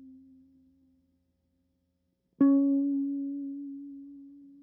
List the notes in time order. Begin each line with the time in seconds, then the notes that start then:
2.41 C#4